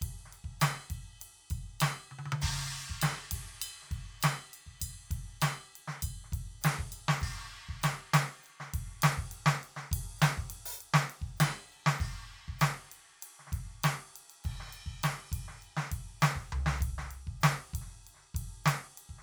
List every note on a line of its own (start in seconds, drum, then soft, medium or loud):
0.01 kick soft
0.01 hi-hat pedal medium
0.01 ride medium
0.25 snare soft
0.33 ride soft
0.44 kick soft
0.59 snare loud
0.59 hi-hat pedal medium
0.59 ride bell loud
0.74 snare soft
0.90 kick soft
0.90 ride medium
0.96 kick soft
1.20 hi-hat pedal medium
1.20 ride medium
1.50 kick soft
1.50 ride bell medium
1.57 kick soft
1.79 snare loud
1.79 hi-hat pedal medium
1.79 ride bell loud
2.11 high tom soft
2.19 high tom medium
2.25 high tom medium
2.32 high tom loud
2.41 kick medium
2.41 hi-hat pedal medium
2.41 crash loud
2.90 kick soft
3.02 snare loud
3.02 hi-hat pedal medium
3.02 ride bell loud
3.14 snare soft
3.31 kick soft
3.31 ride loud
3.38 kick soft
3.60 hi-hat pedal medium
3.60 ride bell loud
3.82 snare soft
3.87 kick soft
3.87 snare soft
3.87 ride soft
3.98 kick soft
4.20 snare loud
4.20 hi-hat pedal medium
4.20 ride bell loud
4.53 ride bell soft
4.66 kick soft
4.77 snare soft
4.77 hi-hat pedal medium
4.81 kick soft
4.81 ride bell loud
4.92 kick soft
5.08 snare soft
5.10 kick medium
5.10 snare soft
5.10 ride medium
5.17 kick soft
5.40 snare loud
5.40 hi-hat pedal medium
5.40 ride bell loud
5.75 ride medium
5.88 snare medium
6.01 kick soft
6.01 hi-hat pedal medium
6.01 ride bell medium
6.09 kick soft
6.24 snare soft
6.32 kick soft
6.32 ride medium
6.39 kick soft
6.61 snare loud
6.61 hi-hat pedal medium
6.61 ride loud
6.79 kick soft
6.92 ride bell medium
7.08 snare loud
7.20 kick medium
7.20 hi-hat pedal medium
7.20 crash medium
7.28 kick soft
7.32 kick soft
7.38 snare soft
7.44 snare soft
7.50 snare soft
7.69 kick soft
7.81 snare loud
7.81 hi-hat pedal medium
7.81 ride bell medium
8.13 snare loud
8.13 ride bell medium
8.20 snare soft
8.43 hi-hat pedal medium
8.43 ride soft
8.60 snare soft
8.73 kick medium
8.73 ride medium
8.81 kick soft
9.02 snare loud
9.02 hi-hat pedal medium
9.02 ride loud
9.17 kick soft
9.23 kick soft
9.31 ride medium
9.46 snare loud
9.63 ride soft
9.76 snare medium
9.91 kick medium
9.91 ride loud
9.98 kick soft
10.03 kick soft
10.18 snare loud
10.18 hi-hat pedal medium
10.18 ride medium
10.37 kick soft
10.50 ride medium
10.65 open hi-hat loud
10.80 ride medium
10.94 snare loud
11.00 snare soft
11.10 ride medium
11.21 kick soft
11.37 snare loud
11.37 hi-hat pedal medium
11.37 ride bell loud
11.51 snare soft
11.68 hi-hat pedal soft
11.72 ride soft
11.86 snare loud
11.97 kick medium
11.97 snare soft
11.97 hi-hat pedal medium
11.97 crash medium
12.07 kick soft
12.11 kick soft
12.48 kick soft
12.59 snare loud
12.59 hi-hat pedal medium
12.59 ride loud
12.84 snare soft
12.92 ride medium
13.09 snare soft
13.21 hi-hat pedal medium
13.21 ride medium
13.39 snare soft
13.47 snare soft
13.52 kick medium
13.52 ride medium
13.61 kick soft
13.83 snare loud
13.83 hi-hat pedal medium
13.83 ride loud
13.97 snare soft
14.07 snare soft
14.16 ride medium
14.30 ride soft
14.44 kick soft
14.44 hi-hat pedal medium
14.44 ride medium
14.51 kick soft
14.60 snare soft
14.67 snare soft
14.72 ride medium
14.86 kick soft
15.03 snare medium
15.03 hi-hat pedal medium
15.03 ride loud
15.18 snare soft
15.32 kick soft
15.32 ride medium
15.37 kick soft
15.48 snare soft
15.60 hi-hat pedal soft
15.60 ride soft
15.77 snare medium
15.91 kick soft
15.91 ride medium
15.98 kick soft
16.20 snare loud
16.20 hi-hat pedal medium
16.20 ride medium
16.34 kick soft
16.34 snare soft
16.50 floor tom loud
16.50 hi-hat pedal soft
16.66 snare loud
16.77 kick medium
16.77 hi-hat pedal soft
16.82 ride medium
16.88 kick soft
16.98 snare medium
17.05 snare soft
17.11 ride medium
17.27 kick soft
17.41 snare loud
17.41 hi-hat pedal medium
17.41 ride loud
17.50 snare soft
17.73 kick soft
17.73 ride medium
17.80 kick soft
17.80 snare soft
17.90 snare soft
17.97 snare soft
18.03 hi-hat pedal soft
18.03 ride soft
18.14 snare soft
18.16 snare soft
18.34 kick soft
18.34 ride medium
18.41 kick soft
18.64 snare loud
18.64 hi-hat pedal medium
18.64 ride loud
18.74 snare soft
18.97 ride medium
19.09 kick soft
19.18 snare soft